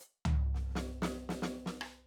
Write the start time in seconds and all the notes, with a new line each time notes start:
0.00 hi-hat pedal
0.25 floor tom
0.55 snare
0.61 snare
0.65 snare
0.69 snare
0.75 snare
1.02 snare
1.29 snare
1.42 snare
1.66 snare
1.81 cross-stick